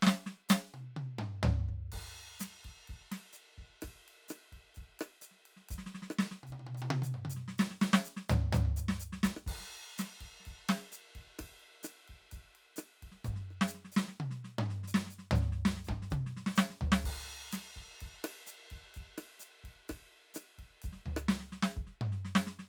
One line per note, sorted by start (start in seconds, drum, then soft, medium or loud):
0.01 snare loud
0.01 hi-hat pedal soft
0.06 snare loud
0.13 snare soft
0.26 snare medium
0.32 snare soft
0.37 snare soft
0.49 snare loud
0.49 hi-hat pedal loud
0.74 high tom medium
0.96 high tom medium
1.18 mid tom loud
1.43 kick soft
1.43 floor tom loud
1.68 kick soft
1.74 kick soft
1.92 kick soft
1.92 crash medium
1.99 kick soft
2.14 snare soft
2.39 snare medium
2.39 hi-hat pedal loud
2.39 ride medium
2.64 kick soft
2.64 snare soft
2.64 ride soft
2.87 kick soft
2.87 ride soft
2.94 kick soft
3.11 snare medium
3.11 ride medium
3.33 hi-hat pedal medium
3.58 kick soft
3.63 kick soft
3.81 kick soft
3.81 cross-stick medium
3.81 hi-hat pedal soft
3.81 ride medium
3.89 kick soft
4.08 ride soft
4.28 cross-stick medium
4.28 hi-hat pedal medium
4.28 ride medium
4.52 kick soft
4.52 ride soft
4.74 kick soft
4.74 hi-hat pedal soft
4.74 ride soft
4.99 cross-stick medium
4.99 ride medium
5.21 hi-hat pedal medium
5.21 ride soft
5.31 snare soft
5.45 ride soft
5.56 snare soft
5.69 kick soft
5.69 hi-hat pedal medium
5.69 ride medium
5.76 kick soft
5.76 snare soft
5.86 snare medium
5.94 snare medium
6.02 snare medium
6.10 cross-stick medium
6.19 snare loud
6.31 snare medium
6.43 hi-hat pedal soft
6.43 high tom medium
6.48 kick soft
6.48 high tom medium
6.59 high tom soft
6.67 high tom medium
6.75 hi-hat pedal soft
6.75 high tom medium
6.82 high tom medium
6.90 high tom loud
7.02 hi-hat pedal medium
7.02 high tom medium
7.14 mid tom medium
7.25 high tom medium
7.30 hi-hat pedal medium
7.36 snare soft
7.48 snare medium
7.58 snare loud
7.58 hi-hat pedal medium
7.70 snare soft
7.81 snare loud
7.81 hi-hat pedal soft
7.93 snare loud
8.04 snare soft
8.04 hi-hat pedal medium
8.16 snare medium
8.29 hi-hat pedal medium
8.29 floor tom loud
8.42 floor tom soft
8.53 hi-hat pedal medium
8.53 floor tom loud
8.65 floor tom medium
8.76 floor tom soft
8.76 hi-hat pedal medium
8.88 snare loud
9.00 hi-hat pedal medium
9.12 snare medium
9.23 kick soft
9.23 snare loud
9.23 hi-hat pedal medium
9.29 kick soft
9.36 cross-stick medium
9.46 kick medium
9.46 hi-hat pedal soft
9.46 crash medium
9.57 kick soft
9.57 snare soft
9.98 snare medium
9.98 hi-hat pedal loud
9.98 ride medium
10.20 kick soft
10.20 ride medium
10.25 kick soft
10.40 snare soft
10.45 kick soft
10.45 hi-hat pedal soft
10.45 ride soft
10.69 snare loud
10.69 ride loud
10.78 snare soft
10.92 hi-hat pedal medium
10.92 ride soft
11.15 kick soft
11.15 ride soft
11.20 kick soft
11.39 kick soft
11.39 cross-stick medium
11.39 hi-hat pedal soft
11.39 ride loud
11.45 kick soft
11.60 ride soft
11.83 cross-stick medium
11.83 hi-hat pedal medium
11.83 ride medium
12.08 kick soft
12.08 ride soft
12.22 snare soft
12.31 kick soft
12.31 hi-hat pedal soft
12.31 ride medium
12.55 ride soft
12.76 cross-stick medium
12.76 hi-hat pedal medium
12.76 ride medium
13.02 kick soft
13.02 ride soft
13.07 kick soft
13.11 snare soft
13.24 kick soft
13.24 hi-hat pedal soft
13.24 mid tom loud
13.33 kick soft
13.33 snare soft
13.50 cross-stick soft
13.61 snare loud
13.67 snare soft
13.67 hi-hat pedal medium
13.74 snare soft
13.84 snare soft
13.92 hi-hat pedal medium
13.96 snare loud
14.08 snare soft
14.20 high tom loud
14.31 snare soft
14.44 snare soft
14.58 mid tom loud
14.70 snare soft
14.83 snare soft
14.87 hi-hat pedal medium
14.94 snare loud
15.06 snare soft
15.06 hi-hat pedal soft
15.18 snare soft
15.31 hi-hat pedal soft
15.31 floor tom loud
15.42 snare soft
15.65 snare loud
15.76 snare soft
15.84 snare soft
15.84 hi-hat pedal soft
15.88 kick soft
15.88 mid tom medium
15.98 kick soft
15.98 snare soft
16.10 kick soft
16.10 hi-hat pedal soft
16.10 high tom loud
16.26 snare soft
16.37 snare soft
16.46 snare loud
16.55 snare loud
16.55 hi-hat pedal medium
16.70 snare soft
16.81 kick soft
16.81 floor tom loud
16.88 kick soft
16.92 snare loud
17.01 kick medium
17.01 hi-hat pedal soft
17.05 crash medium
17.11 kick soft
17.23 snare soft
17.52 snare medium
17.52 hi-hat pedal medium
17.52 ride loud
17.72 kick soft
17.72 hi-hat pedal soft
17.81 kick soft
17.85 snare soft
17.99 kick soft
17.99 hi-hat pedal soft
17.99 ride medium
18.07 kick soft
18.24 cross-stick medium
18.24 ride loud
18.46 hi-hat pedal medium
18.46 ride soft
18.70 kick soft
18.70 ride soft
18.77 kick soft
18.94 kick soft
18.94 hi-hat pedal soft
18.94 ride soft
19.02 kick soft
19.18 cross-stick medium
19.18 ride medium
19.39 hi-hat pedal medium
19.39 ride soft
19.64 kick soft
19.64 ride soft
19.69 kick soft
19.88 kick soft
19.88 cross-stick medium
19.88 hi-hat pedal soft
19.88 ride medium
19.95 kick soft
20.34 cross-stick medium
20.34 hi-hat pedal medium
20.34 ride medium
20.58 kick soft
20.58 ride soft
20.63 kick soft
20.82 kick soft
20.82 hi-hat pedal soft
20.82 ride medium
20.91 kick soft
20.91 snare soft
21.06 floor tom medium
21.16 cross-stick medium
21.28 snare loud
21.40 snare soft
21.52 snare medium
21.62 snare medium
21.76 kick medium
21.84 kick soft
21.84 snare soft
22.01 mid tom loud
22.12 snare soft
22.25 snare medium
22.35 snare loud
22.47 snare medium
22.59 snare soft